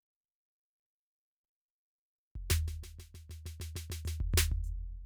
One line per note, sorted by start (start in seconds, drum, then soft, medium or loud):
2.36 kick soft
2.50 snare loud
2.50 floor tom loud
2.68 snare soft
2.68 floor tom soft
2.83 snare soft
2.83 floor tom soft
2.99 snare soft
2.99 floor tom soft
3.14 snare soft
3.14 floor tom soft
3.30 snare soft
3.30 floor tom soft
3.46 snare soft
3.46 floor tom soft
3.60 snare soft
3.60 floor tom medium
3.76 snare medium
3.76 floor tom medium
3.90 snare medium
3.90 floor tom medium
4.05 snare medium
4.05 floor tom medium
4.05 hi-hat pedal soft
4.20 kick medium
4.33 floor tom loud
4.33 hi-hat pedal soft
4.37 snare loud
4.52 kick medium
4.64 hi-hat pedal soft